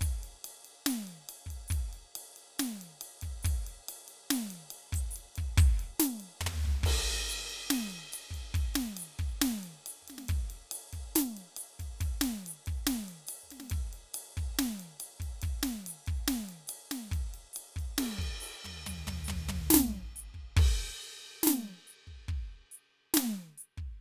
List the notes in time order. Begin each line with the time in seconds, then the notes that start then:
0.01 kick, hi-hat pedal, ride
0.23 ride
0.45 ride
0.65 ride
0.86 snare, hi-hat pedal, ride
1.07 ride
1.29 ride
1.46 kick
1.50 ride
1.68 kick, hi-hat pedal
1.72 ride
1.93 ride
2.16 ride
2.36 ride
2.59 snare, hi-hat pedal, ride
2.81 ride
2.99 hi-hat pedal, ride
3.22 kick, ride
3.43 kick, hi-hat pedal, ride
3.67 ride
3.89 ride
4.08 ride
4.31 snare, hi-hat pedal, ride
4.51 ride
4.71 ride
4.93 open hi-hat, kick, ride
5.11 hi-hat pedal
5.16 ride
5.36 kick, ride
5.58 open hi-hat, kick, ride
5.79 ride
6.00 snare, ride
6.20 ride
6.41 floor tom, hi-hat pedal
6.47 floor tom
6.65 kick
6.83 kick, crash, ride
7.29 hi-hat pedal, ride
7.50 ride
7.64 hi-hat pedal
7.70 snare, ride
7.90 ride
8.12 hi-hat pedal, ride
8.31 kick, ride
8.54 kick, ride
8.75 snare, ride
8.97 hi-hat pedal, ride
9.19 kick, ride
9.28 hi-hat pedal
9.42 snare, ride
9.63 ride
9.86 hi-hat pedal, ride
10.02 kick
10.08 snare, ride
10.18 snare
10.29 kick, ride
10.50 ride
10.71 hi-hat pedal, ride
10.93 kick, ride
11.16 snare, ride
11.37 ride
11.57 hi-hat pedal, ride
11.79 kick, ride
11.98 kick, hi-hat pedal, ride
12.21 snare, ride
12.46 hi-hat pedal, ride
12.66 kick, ride
12.75 hi-hat pedal
12.87 snare, ride
13.08 ride
13.27 hi-hat pedal, ride
13.43 kick
13.51 snare, ride
13.60 snare
13.70 kick, ride
13.93 ride
14.14 hi-hat pedal, ride
14.37 kick, ride
14.59 snare, ride
14.80 ride
15.00 hi-hat pedal, ride
15.20 kick, ride
15.42 kick, hi-hat pedal, ride
15.63 snare, ride
15.87 hi-hat pedal, ride
16.07 kick, ride
16.13 hi-hat pedal
16.28 snare, ride
16.49 ride
16.67 hi-hat pedal, ride
16.91 snare, ride
17.12 kick, ride
17.34 ride
17.53 hi-hat pedal, ride
17.76 kick, ride
17.98 snare, ride
18.19 kick, ride
18.40 hi-hat pedal, ride
18.65 floor tom, high tom
18.86 floor tom, hi-hat pedal, high tom
19.07 floor tom, high tom
19.24 hi-hat pedal, high tom
19.30 floor tom
19.49 floor tom, high tom
19.70 snare
19.74 snare
20.16 hi-hat pedal
20.34 kick
20.57 kick, crash
21.01 hi-hat pedal
21.43 snare
21.47 snare
21.87 hi-hat pedal
22.07 kick
22.28 kick
22.72 hi-hat pedal
23.14 snare
23.17 snare
23.58 hi-hat pedal
23.78 kick